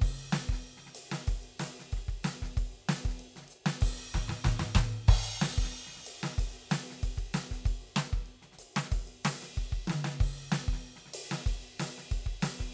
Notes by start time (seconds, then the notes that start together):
0.02 kick, crash
0.33 snare, hi-hat pedal, crash
0.49 kick, snare
0.63 crash
0.78 snare
0.87 snare
0.95 hi-hat pedal, crash
1.12 snare
1.28 kick, crash
1.44 crash
1.60 snare, hi-hat pedal, crash
1.80 snare
1.93 kick, snare, crash
2.09 kick, crash
2.24 snare, hi-hat pedal, crash
2.42 kick, snare
2.57 kick, crash
2.89 snare, hi-hat pedal, crash
3.05 kick, snare
3.20 crash
3.36 snare
3.41 kick, snare
3.48 hi-hat pedal, crash
3.66 snare
3.81 kick, hi-hat pedal, crash
4.14 kick, snare, mid tom
4.29 snare, mid tom
4.45 kick, snare, mid tom
4.60 snare, mid tom
4.75 kick, snare, hi-hat pedal, mid tom
5.08 kick, crash
5.41 snare, hi-hat pedal, crash
5.58 kick
5.64 snare
5.87 snare
5.97 snare
5.99 snare
6.05 hi-hat pedal, crash
6.23 snare
6.38 kick, crash
6.56 crash
6.70 snare, hi-hat pedal, crash
6.91 snare
7.03 kick, crash
7.18 kick, crash
7.34 snare, hi-hat pedal, crash
7.51 kick, snare
7.66 kick, crash
7.96 snare, hi-hat pedal
8.13 kick, snare
8.26 crash
8.42 snare
8.53 snare
8.58 kick, hi-hat pedal, crash
8.77 snare
8.84 snare
8.92 kick, crash
9.08 crash
9.24 snare, hi-hat pedal, crash
9.43 snare
9.57 kick, snare, crash
9.73 kick
9.88 snare, hi-hat pedal, high tom
10.05 snare
10.21 kick, crash
10.52 snare, hi-hat pedal, crash
10.68 kick
10.73 snare
10.81 crash
10.96 snare
11.06 snare
11.09 snare
11.14 hi-hat pedal, crash
11.32 snare
11.46 kick, crash
11.63 crash
11.80 snare, hi-hat pedal, crash
11.98 snare
12.12 kick, crash
12.26 kick, crash
12.42 snare, hi-hat pedal, crash
12.60 kick, snare